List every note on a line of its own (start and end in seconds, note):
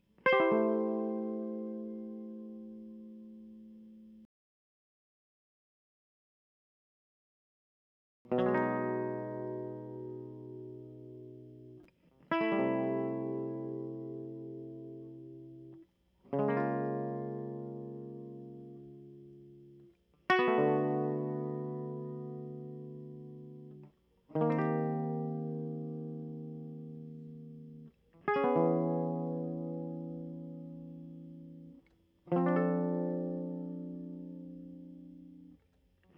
0.19 0.26 E5
0.26 3.86 C5
0.33 4.28 G4
0.40 4.38 E4
0.52 4.34 A3
8.33 11.82 B2
8.39 11.90 F#3
8.47 11.80 G#3
8.55 11.92 D#4
12.32 15.86 E4
12.41 15.79 A3
12.53 15.86 G3
12.60 15.78 C3
16.34 19.88 C#3
16.40 19.90 G#3
16.49 18.80 A#3
16.57 19.93 F4
20.30 23.88 F#4
20.39 23.86 B3
20.48 23.93 A3
20.59 23.92 D3
24.36 27.91 D#3
24.42 27.93 A#3
24.50 27.90 C4
24.59 27.78 G4
28.28 30.58 G#4
28.36 31.83 C#4
28.44 31.83 B3
28.57 31.74 E3
32.33 35.59 F3
32.37 35.57 C4
32.47 35.57 D4
32.57 34.82 A4